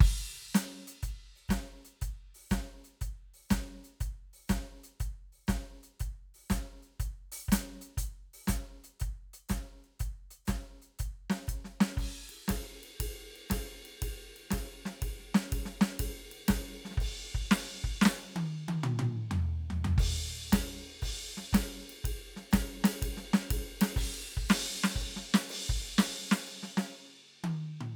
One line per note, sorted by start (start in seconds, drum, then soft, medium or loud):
0.01 kick loud
0.01 crash medium
0.55 closed hi-hat loud
0.55 snare loud
0.88 closed hi-hat medium
1.03 closed hi-hat medium
1.03 kick medium
1.36 open hi-hat soft
1.49 closed hi-hat medium
1.49 kick medium
1.49 snare loud
1.49 hi-hat pedal soft
1.85 closed hi-hat soft
2.02 closed hi-hat medium
2.02 kick medium
2.35 open hi-hat soft
2.51 closed hi-hat medium
2.51 kick medium
2.51 snare loud
2.51 hi-hat pedal medium
2.85 closed hi-hat soft
3.01 closed hi-hat medium
3.01 kick medium
3.34 open hi-hat soft
3.50 closed hi-hat medium
3.50 kick medium
3.50 snare loud
3.50 hi-hat pedal medium
3.84 closed hi-hat soft
4.01 closed hi-hat medium
4.01 kick medium
4.34 open hi-hat soft
4.48 closed hi-hat medium
4.48 kick medium
4.48 snare loud
4.48 hi-hat pedal soft
4.84 closed hi-hat soft
5.00 closed hi-hat medium
5.00 kick medium
5.33 open hi-hat soft
5.47 closed hi-hat medium
5.47 kick medium
5.47 snare loud
5.47 hi-hat pedal medium
5.84 closed hi-hat soft
6.00 closed hi-hat medium
6.00 kick medium
6.35 open hi-hat soft
6.50 open hi-hat medium
6.50 kick medium
6.50 snare loud
6.50 hi-hat pedal medium
6.83 closed hi-hat soft
7.00 closed hi-hat medium
7.00 kick medium
7.32 open hi-hat medium
7.49 closed hi-hat loud
7.49 kick medium
7.49 snare loud
7.49 hi-hat pedal medium
7.82 closed hi-hat medium
7.98 closed hi-hat medium
7.98 kick medium
8.34 open hi-hat medium
8.48 open hi-hat loud
8.48 kick medium
8.48 snare medium
8.48 hi-hat pedal medium
8.84 closed hi-hat soft
9.00 closed hi-hat medium
9.00 kick medium
9.34 open hi-hat soft
9.49 open hi-hat medium
9.49 kick medium
9.49 snare medium
9.49 hi-hat pedal soft
9.84 closed hi-hat soft
10.00 closed hi-hat medium
10.00 kick medium
10.31 closed hi-hat soft
10.46 closed hi-hat medium
10.46 kick medium
10.46 snare medium
10.46 hi-hat pedal soft
10.82 closed hi-hat soft
10.99 closed hi-hat medium
10.99 kick medium
11.30 snare loud
11.47 kick medium
11.47 closed hi-hat loud
11.47 hi-hat pedal soft
11.65 snare soft
11.81 snare loud
11.97 kick medium
11.97 crash medium
12.30 ride medium
12.47 kick medium
12.47 snare medium
12.47 hi-hat pedal soft
12.47 ride loud
12.84 ride medium
13.00 kick medium
13.00 ride loud
13.36 ride soft
13.49 kick medium
13.49 snare medium
13.49 hi-hat pedal soft
13.49 ride loud
13.86 ride medium
14.02 kick medium
14.02 ride loud
14.37 ride soft
14.51 kick medium
14.51 snare medium
14.51 hi-hat pedal soft
14.51 ride loud
14.86 snare medium
15.02 kick medium
15.02 ride loud
15.19 snare soft
15.35 snare loud
15.53 kick medium
15.53 ride loud
15.66 snare medium
15.81 snare loud
16.00 kick medium
16.00 ride loud
16.32 ride medium
16.47 kick medium
16.47 snare loud
16.47 hi-hat pedal soft
16.47 ride loud
16.85 snare soft
16.91 snare soft
16.98 kick medium
16.98 snare soft
16.98 ride medium
17.35 kick medium
17.51 snare loud
17.51 ride medium
17.84 kick medium
18.02 snare loud
18.06 snare loud
18.36 high tom loud
18.69 high tom loud
18.84 mid tom loud
18.99 mid tom loud
19.31 floor tom loud
19.71 floor tom loud
19.85 floor tom loud
19.98 kick medium
19.98 floor tom soft
19.98 ride loud
20.52 kick medium
20.52 snare loud
20.52 hi-hat pedal soft
20.52 ride loud
20.87 ride soft
21.02 kick medium
21.02 ride loud
21.38 snare medium
21.53 kick medium
21.53 snare loud
21.53 hi-hat pedal medium
21.53 ride loud
21.90 ride medium
22.05 kick medium
22.05 ride loud
22.37 snare soft
22.51 kick medium
22.51 snare loud
22.51 hi-hat pedal medium
22.51 ride loud
22.84 snare loud
22.84 ride loud
23.02 kick medium
23.02 ride loud
23.18 snare medium
23.34 snare loud
23.51 kick medium
23.51 hi-hat pedal soft
23.51 ride loud
23.81 snare loud
23.81 ride loud
23.97 kick medium
23.97 crash medium
24.37 kick medium
24.46 hi-hat pedal soft
24.46 ride loud
24.50 snare loud
24.84 snare loud
24.96 kick medium
25.01 ride medium
25.17 snare medium
25.34 snare loud
25.50 ride loud
25.70 kick medium
25.81 ride medium
25.99 snare loud
25.99 ride medium
26.32 snare loud
26.47 ride medium
26.63 snare medium
26.78 snare loud
27.44 high tom loud
27.81 mid tom loud